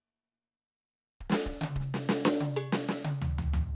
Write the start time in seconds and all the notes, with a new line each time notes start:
1.20 kick
1.30 snare
1.32 snare
1.46 kick
1.61 high tom
1.63 high tom
1.76 kick
1.80 snare
1.94 snare
2.09 snare
2.25 snare
2.41 high tom
2.56 percussion
2.72 snare
2.89 snare
3.05 high tom
3.22 floor tom
3.38 floor tom
3.53 floor tom